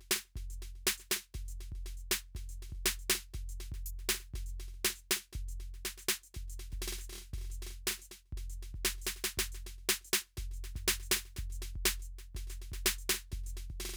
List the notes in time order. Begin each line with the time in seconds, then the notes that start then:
0.01 snare
0.11 snare
0.16 snare
0.25 snare
0.36 kick, snare
0.50 snare, hi-hat pedal
0.62 snare
0.74 snare
0.87 snare
0.98 snare, hi-hat pedal
1.11 snare
1.17 snare
1.34 kick, snare
1.45 snare, hi-hat pedal
1.50 snare
1.61 snare
1.72 kick, snare
1.75 snare
1.86 snare
1.94 snare, hi-hat pedal
1.99 snare
2.12 snare
2.35 kick, snare
2.44 snare
2.48 snare, hi-hat pedal
2.50 snare, closed hi-hat
2.63 snare
2.70 kick, snare
2.75 snare
2.86 snare
2.99 snare, hi-hat pedal
3.10 snare
3.15 snare
3.34 kick, snare
3.46 snare
3.49 snare, hi-hat pedal
3.61 snare
3.72 kick, snare
3.86 closed hi-hat
3.99 snare
4.09 snare
4.15 snare
4.20 snare
4.34 kick, snare
4.46 snare, hi-hat pedal
4.60 snare
4.68 snare
4.74 snare
4.85 snare
4.90 snare
4.96 snare, hi-hat pedal
5.11 snare
5.17 snare
5.33 kick, snare
5.48 snare, hi-hat pedal
5.60 snare
5.74 snare
5.85 snare
5.97 snare, hi-hat pedal
6.09 snare
6.22 snare, hi-hat pedal
6.35 kick, snare
6.48 snare, hi-hat pedal
6.60 snare
6.71 snare
6.72 kick, snare
6.82 snare
6.88 snare
6.93 snare
6.99 snare, hi-hat pedal
7.10 snare
7.13 snare
7.16 snare
7.18 snare
7.22 snare, hi-hat pedal
7.34 kick, snare
7.38 snare
7.42 snare
7.45 snare
7.50 snare, hi-hat pedal, crash
7.62 snare
7.67 snare
7.71 snare
7.87 snare
7.91 snare
7.98 snare
8.00 snare, hi-hat pedal
8.12 snare
8.26 snare
8.33 kick
8.38 snare
8.50 snare, hi-hat pedal
8.63 snare
8.75 kick, snare
8.85 snare
8.95 snare
8.98 snare, hi-hat pedal
9.07 snare
9.16 snare
9.24 snare
9.38 kick, snare
9.52 snare, hi-hat pedal
9.67 snare
9.78 snare
9.89 snare
10.01 snare, hi-hat pedal
10.14 snare
10.22 snare
10.27 snare
10.38 kick, snare
10.51 snare, hi-hat pedal
10.64 snare
10.75 kick, snare
10.76 snare
10.88 snare
10.99 snare
11.03 hi-hat pedal
11.12 snare
11.17 snare
11.26 snare
11.37 kick, snare
11.50 snare, hi-hat pedal
11.62 snare
11.74 kick, snare
11.86 snare
11.98 snare
12.00 snare, hi-hat pedal
12.19 snare
12.35 kick, snare
12.47 snare, hi-hat pedal
12.50 snare
12.62 snare
12.72 kick, snare
12.86 snare
12.98 snare, hi-hat pedal
13.10 snare
13.15 snare
13.32 kick, snare
13.44 snare, hi-hat pedal
13.47 snare
13.57 snare
13.65 snare
13.70 kick, snare
13.80 snare
13.85 snare
13.90 snare
13.94 snare